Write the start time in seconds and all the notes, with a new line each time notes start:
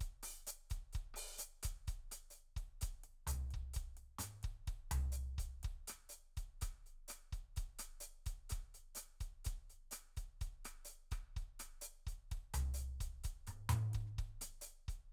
0.01 closed hi-hat, kick
0.23 open hi-hat, cross-stick
0.47 hi-hat pedal
0.70 closed hi-hat, kick
0.77 kick
0.93 closed hi-hat, kick
1.14 open hi-hat, cross-stick
1.39 closed hi-hat, hi-hat pedal
1.63 closed hi-hat, kick, cross-stick
1.71 kick
1.88 closed hi-hat, kick
2.12 closed hi-hat, cross-stick, snare
2.31 hi-hat pedal
2.35 closed hi-hat
2.57 kick, closed hi-hat
2.82 closed hi-hat, kick, snare
3.04 closed hi-hat
3.27 floor tom, hi-hat pedal, open hi-hat
3.51 kick, closed hi-hat
3.74 closed hi-hat, kick
3.97 closed hi-hat
4.19 closed hi-hat, snare, hi-hat pedal, mid tom
4.24 cross-stick
4.43 kick, closed hi-hat
4.68 kick, closed hi-hat
4.92 closed hi-hat, floor tom
5.12 closed hi-hat, hi-hat pedal
5.39 closed hi-hat, kick
5.44 kick
5.63 kick, closed hi-hat
5.88 closed hi-hat, cross-stick, snare
6.10 closed hi-hat, hi-hat pedal
6.37 closed hi-hat, kick
6.62 closed hi-hat, kick, cross-stick
6.86 closed hi-hat
7.08 closed hi-hat, cross-stick, hi-hat pedal
7.33 closed hi-hat, kick
7.57 closed hi-hat, kick
7.79 closed hi-hat, cross-stick
8.01 closed hi-hat, hi-hat pedal
8.26 closed hi-hat, kick
8.50 closed hi-hat, kick, cross-stick
8.58 kick
8.75 closed hi-hat
8.95 closed hi-hat, cross-stick, snare, hi-hat pedal
9.21 closed hi-hat, kick
9.45 closed hi-hat, kick, snare
9.53 kick
9.70 closed hi-hat
9.92 closed hi-hat, cross-stick, hi-hat pedal
10.17 closed hi-hat, kick
10.41 closed hi-hat, kick
10.47 kick
10.65 closed hi-hat, cross-stick, snare
10.85 hi-hat pedal
10.89 closed hi-hat
11.12 closed hi-hat, kick, cross-stick, snare
11.18 kick
11.37 closed hi-hat, kick
11.42 kick
11.60 closed hi-hat, cross-stick, snare
11.82 closed hi-hat, hi-hat pedal
12.07 closed hi-hat, kick
12.13 kick
12.32 kick, closed hi-hat
12.37 kick
12.54 closed hi-hat, floor tom
12.74 hi-hat pedal
12.78 closed hi-hat
13.01 closed hi-hat, kick
13.07 kick
13.24 closed hi-hat, kick
13.47 closed hi-hat, mid tom
13.70 hi-hat pedal, mid tom, open hi-hat
13.94 kick, closed hi-hat
14.01 kick
14.07 snare
14.19 kick, closed hi-hat
14.41 closed hi-hat, snare
14.62 hi-hat pedal
14.66 closed hi-hat
14.89 closed hi-hat, kick